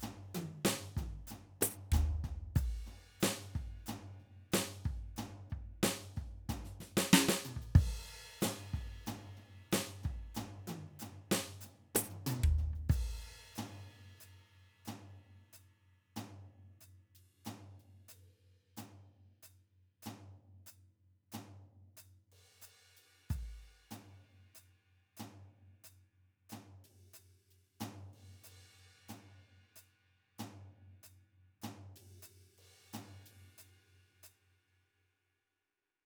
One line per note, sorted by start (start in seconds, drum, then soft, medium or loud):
0.01 floor tom loud
0.01 hi-hat pedal medium
0.35 floor tom medium
0.35 high tom loud
0.65 snare loud
0.65 floor tom loud
0.65 hi-hat pedal medium
0.97 kick medium
0.97 floor tom medium
0.97 high tom medium
1.28 floor tom medium
1.28 hi-hat pedal medium
1.62 floor tom loud
1.62 high tom loud
1.92 floor tom loud
1.92 hi-hat pedal medium
1.92 mid tom loud
2.24 kick soft
2.24 floor tom medium
2.56 kick medium
2.56 hi-hat pedal medium
2.56 crash soft
2.87 floor tom soft
3.21 snare loud
3.21 floor tom loud
3.21 hi-hat pedal medium
3.31 floor tom soft
3.56 kick soft
3.56 floor tom soft
3.87 floor tom loud
3.87 hi-hat pedal medium
4.20 floor tom soft
4.52 snare loud
4.52 floor tom loud
4.52 hi-hat pedal medium
4.85 kick medium
4.85 floor tom soft
5.17 floor tom loud
5.17 hi-hat pedal medium
5.50 kick soft
5.50 floor tom soft
5.83 snare loud
5.83 floor tom loud
5.83 hi-hat pedal medium
6.17 kick soft
6.17 floor tom soft
6.49 kick soft
6.49 floor tom loud
6.49 hi-hat pedal medium
6.65 snare soft
6.81 snare soft
6.97 snare loud
7.12 snare loud
7.12 hi-hat pedal medium
7.29 snare loud
7.45 mid tom medium
7.57 kick soft
7.62 crash soft
7.76 kick loud
7.76 crash medium
8.42 snare loud
8.42 floor tom loud
8.42 hi-hat pedal medium
8.74 kick soft
8.74 floor tom soft
9.07 floor tom loud
9.07 hi-hat pedal medium
9.37 floor tom soft
9.72 snare loud
9.72 floor tom loud
9.72 hi-hat pedal medium
10.04 kick medium
10.04 floor tom soft
10.35 floor tom loud
10.35 hi-hat pedal medium
10.68 floor tom medium
10.68 high tom loud
11.00 floor tom medium
11.00 hi-hat pedal medium
11.32 snare loud
11.32 floor tom medium
11.61 floor tom soft
11.61 hi-hat pedal medium
11.95 floor tom loud
11.95 high tom loud
12.10 high tom soft
12.27 hi-hat pedal medium
12.27 mid tom loud
12.44 mid tom loud
12.59 floor tom soft
12.74 kick soft
12.74 crash soft
12.90 kick medium
12.90 hi-hat pedal medium
12.90 crash medium
13.23 floor tom soft
13.56 floor tom loud
13.56 hi-hat pedal medium
13.66 floor tom soft
14.21 hi-hat pedal medium
14.85 floor tom medium
14.85 hi-hat pedal medium
15.53 hi-hat pedal medium
16.16 floor tom loud
16.16 hi-hat pedal medium
16.81 hi-hat pedal medium
17.15 ride soft
17.45 floor tom medium
17.45 hi-hat pedal medium
17.80 ride soft
18.09 hi-hat pedal medium
18.09 crash soft
18.77 floor tom medium
18.77 hi-hat pedal medium
19.43 hi-hat pedal medium
20.03 floor tom medium
20.03 hi-hat pedal medium
20.67 hi-hat pedal medium
21.32 floor tom medium
21.32 hi-hat pedal medium
21.97 hi-hat pedal medium
22.32 crash soft
22.62 hi-hat pedal medium
22.62 crash soft
22.97 ride soft
23.30 kick medium
23.30 hi-hat pedal medium
23.30 crash soft
23.91 floor tom medium
23.91 hi-hat pedal medium
24.55 hi-hat pedal medium
25.17 floor tom medium
25.17 hi-hat pedal medium
25.84 hi-hat pedal medium
26.50 floor tom medium
26.50 hi-hat pedal medium
26.85 crash soft
27.14 hi-hat pedal medium
27.51 ride soft
27.81 floor tom loud
27.81 hi-hat pedal medium
28.14 crash soft
28.44 hi-hat pedal medium
28.44 crash soft
29.09 floor tom medium
29.09 hi-hat pedal medium
29.76 hi-hat pedal medium
30.39 floor tom medium
30.39 hi-hat pedal medium
31.03 hi-hat pedal medium
31.62 floor tom loud
31.62 hi-hat pedal medium
31.96 crash soft
32.23 hi-hat pedal medium
32.58 crash soft
32.93 floor tom medium
32.93 hi-hat pedal medium
33.26 ride soft
33.40 ride soft
33.58 hi-hat pedal medium
33.58 crash soft
34.24 hi-hat pedal medium